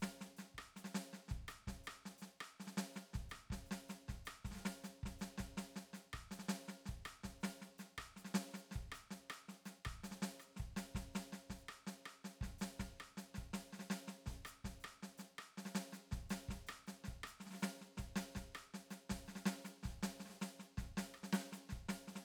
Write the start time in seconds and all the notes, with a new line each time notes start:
0.01 snare, hi-hat pedal
0.22 snare
0.38 snare, hi-hat pedal
0.55 kick, cross-stick
0.77 snare, hi-hat pedal
0.85 snare
0.96 snare
1.14 snare
1.29 kick, snare
1.49 cross-stick, hi-hat pedal
1.68 kick, snare
1.85 cross-stick, hi-hat pedal
2.06 snare
2.19 snare, hi-hat pedal
2.42 cross-stick
2.61 snare
2.68 snare
2.78 snare
2.96 snare, hi-hat pedal
3.14 kick, snare
3.30 cross-stick, hi-hat pedal
3.51 kick, snare
3.67 hi-hat pedal
3.72 snare
3.90 snare, hi-hat pedal
4.09 kick, snare
4.26 cross-stick, hi-hat pedal
4.46 kick, snare
4.52 snare
4.54 snare
4.56 snare
4.66 snare
4.85 snare, hi-hat pedal
5.04 kick, snare
5.20 snare, hi-hat pedal
5.39 kick, snare
5.58 snare, hi-hat pedal
5.77 snare
5.94 snare, hi-hat pedal
6.14 kick, cross-stick
6.32 snare, hi-hat pedal
6.40 snare
6.50 snare
6.69 snare
6.87 kick, snare
7.06 cross-stick, hi-hat pedal
7.25 kick, snare
7.41 snare, hi-hat pedal
7.62 snare
7.79 snare, hi-hat pedal
7.99 kick, cross-stick
8.17 snare, hi-hat pedal
8.26 snare
8.35 snare
8.55 snare, hi-hat pedal
8.72 snare
8.77 kick
8.93 cross-stick, hi-hat pedal
9.12 snare
9.31 cross-stick, hi-hat pedal
9.49 snare
9.66 snare, hi-hat pedal
9.86 kick, cross-stick
10.04 snare, hi-hat pedal
10.12 snare
10.23 snare
10.41 cross-stick, hi-hat pedal
10.57 kick, snare
10.77 snare, hi-hat pedal
10.96 kick, snare
11.14 snare, hi-hat pedal
11.33 snare
11.51 kick, snare
11.59 hi-hat pedal
11.70 cross-stick
11.88 snare
12.07 cross-stick
12.25 snare
12.42 kick, snare
12.59 snare, hi-hat pedal
12.80 kick, snare
13.01 cross-stick
13.18 snare, hi-hat pedal
13.35 kick, snare
13.54 snare, hi-hat pedal
13.74 snare
13.80 snare
13.91 snare
14.09 snare
14.27 kick, snare
14.29 snare
14.46 cross-stick, hi-hat pedal
14.65 kick, snare
14.81 hi-hat pedal
14.85 cross-stick
15.04 snare
15.19 snare, hi-hat pedal
15.39 cross-stick
15.58 snare
15.66 snare
15.76 snare
15.94 snare, hi-hat pedal
16.12 kick, snare
16.30 snare, hi-hat pedal
16.50 kick, snare
16.68 cross-stick, hi-hat pedal
16.88 snare, hi-hat pedal
17.05 kick, snare
17.24 cross-stick, hi-hat pedal
17.41 snare
17.47 snare
17.51 snare
17.54 snare
17.61 snare, hi-hat pedal
17.82 snare
17.98 kick, snare
18.17 snare
18.21 hi-hat pedal
18.36 kick, snare
18.56 cross-stick, hi-hat pedal
18.75 snare
18.91 snare, hi-hat pedal
19.10 kick, snare
19.27 snare, hi-hat pedal
19.36 snare
19.47 snare
19.66 snare, hi-hat pedal
19.84 snare
19.86 kick, snare
20.04 snare, hi-hat pedal
20.21 snare
20.26 snare
20.30 snare
20.42 snare, hi-hat pedal
20.60 snare
20.78 kick, snare
20.98 snare
21.15 cross-stick, hi-hat pedal
21.24 snare
21.34 snare
21.53 snare, hi-hat pedal
21.70 kick, snare
21.90 snare, hi-hat pedal
22.08 snare
22.16 snare